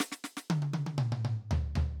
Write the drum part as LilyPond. \new DrumStaff \drummode { \time 4/4 \tempo 4 = 120 sn16 sn16 sn16 sn16 tommh16 tommh16 tommh16 tommh16 toml16 toml16 toml8 tomfh8 tomfh8 | }